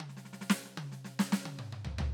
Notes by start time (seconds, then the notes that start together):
0.00 high tom
0.09 snare
0.17 snare
0.25 snare
0.33 snare
0.41 snare
0.50 snare
0.65 snare
0.77 high tom
0.92 snare
1.04 snare
1.19 snare
1.32 snare
1.45 high tom
1.59 mid tom
1.72 mid tom
1.84 floor tom
1.98 floor tom